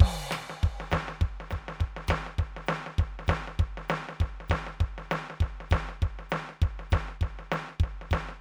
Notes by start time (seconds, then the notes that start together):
0.01 kick, crash
0.32 snare, hi-hat pedal
0.50 snare
0.64 kick, snare
0.81 snare
0.91 kick, snare, hi-hat pedal
1.09 snare
1.22 kick, snare
1.41 snare
1.51 kick, snare, hi-hat pedal
1.69 snare
1.81 kick, snare
1.97 snare
2.08 kick, snare, hi-hat pedal
2.11 snare
2.27 snare
2.39 kick, snare
2.57 snare
2.67 snare, hi-hat pedal
2.87 snare
2.99 kick, snare
3.20 snare
3.27 kick, hi-hat pedal
3.48 snare
3.60 kick, snare
3.78 snare
3.89 snare, hi-hat pedal
4.09 snare
4.21 kick, snare
4.41 snare
4.49 kick, snare, hi-hat pedal
4.67 snare
4.81 kick, snare
4.99 snare
5.04 kick
5.11 snare, hi-hat pedal
5.31 snare
5.41 kick, snare
5.61 snare
5.70 kick, snare, hi-hat pedal
5.90 snare
6.03 kick, snare
6.20 snare
6.30 snare, hi-hat pedal
6.50 snare
6.62 kick, snare
6.80 snare
6.91 kick, snare, hi-hat pedal
7.09 snare
7.22 kick, snare
7.40 snare
7.52 snare, hi-hat pedal
7.69 snare
7.81 kick, snare
8.02 snare
8.11 kick, snare, hi-hat pedal
8.29 snare